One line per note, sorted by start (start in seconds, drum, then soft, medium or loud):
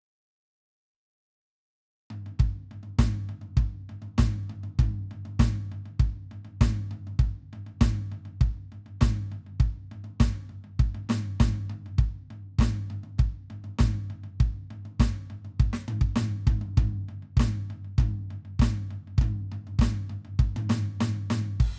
2.10 floor tom medium
2.26 floor tom medium
2.39 kick loud
2.39 floor tom medium
2.71 floor tom medium
2.83 floor tom medium
2.99 kick loud
2.99 snare loud
2.99 floor tom loud
3.29 floor tom medium
3.41 floor tom medium
3.57 kick loud
3.57 floor tom medium
3.89 floor tom medium
4.02 floor tom medium
4.18 kick loud
4.18 snare loud
4.18 floor tom loud
4.50 floor tom medium
4.63 floor tom medium
4.79 kick loud
4.79 floor tom loud
5.11 floor tom medium
5.25 floor tom medium
5.39 kick loud
5.39 snare loud
5.39 floor tom loud
5.72 floor tom medium
5.86 floor tom medium
6.00 kick loud
6.00 floor tom medium
6.31 floor tom medium
6.45 floor tom medium
6.61 kick loud
6.61 snare loud
6.61 floor tom loud
6.91 floor tom medium
7.07 floor tom medium
7.19 kick loud
7.19 floor tom medium
7.53 floor tom medium
7.66 floor tom medium
7.81 kick loud
7.81 snare loud
7.81 floor tom loud
8.12 floor tom medium
8.25 floor tom medium
8.41 kick loud
8.41 floor tom medium
8.72 floor tom medium
8.86 floor tom medium
9.01 kick loud
9.01 snare loud
9.01 floor tom loud
9.32 floor tom medium
9.46 floor tom soft
9.60 kick loud
9.60 floor tom medium
9.91 floor tom medium
10.04 floor tom medium
10.20 kick loud
10.20 snare loud
10.20 floor tom loud
10.49 floor tom medium
10.64 floor tom soft
10.79 kick loud
10.79 floor tom medium
10.95 floor tom medium
11.09 snare loud
11.09 floor tom loud
11.40 kick loud
11.40 snare loud
11.40 floor tom loud
11.70 floor tom medium
11.86 floor tom medium
11.98 kick loud
11.98 floor tom medium
12.30 floor tom medium
12.59 kick loud
12.59 snare loud
12.59 floor tom loud
12.90 floor tom medium
13.03 floor tom medium
13.18 kick loud
13.18 floor tom medium
13.50 floor tom medium
13.64 floor tom medium
13.79 kick loud
13.79 snare loud
13.79 floor tom loud
14.10 floor tom medium
14.23 floor tom medium
14.40 kick loud
14.40 floor tom medium
14.70 floor tom medium
14.85 floor tom medium
15.00 kick loud
15.00 snare loud
15.00 floor tom loud
15.30 floor tom medium
15.45 floor tom medium
15.60 kick loud
15.60 floor tom medium
15.73 snare loud
15.88 floor tom loud
16.01 kick loud
16.16 snare loud
16.16 floor tom loud
16.47 kick loud
16.47 floor tom loud
16.61 floor tom medium
16.77 kick loud
16.77 floor tom loud
17.09 floor tom medium
17.22 floor tom soft
17.37 kick loud
17.37 snare loud
17.37 floor tom loud
17.70 floor tom medium
17.84 floor tom soft
17.98 kick loud
17.98 floor tom loud
18.30 floor tom medium
18.45 floor tom soft
18.59 kick loud
18.59 snare loud
18.59 floor tom loud
18.91 floor tom medium
19.07 floor tom soft
19.18 kick loud
19.18 floor tom loud
19.52 floor tom medium
19.67 floor tom medium
19.79 kick loud
19.79 snare loud
19.79 floor tom loud
20.09 floor tom medium
20.25 floor tom medium
20.39 kick loud
20.39 floor tom loud
20.56 floor tom loud
20.69 snare loud
20.69 floor tom loud
21.00 snare loud
21.00 floor tom loud
21.30 snare loud
21.30 floor tom loud
21.60 kick loud
21.60 crash medium